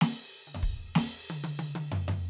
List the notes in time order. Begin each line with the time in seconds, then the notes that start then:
0.02 snare, crash
0.48 high tom
0.55 floor tom
0.63 kick
0.96 snare, crash
1.31 high tom
1.45 high tom
1.60 high tom
1.76 high tom
1.93 floor tom
2.09 floor tom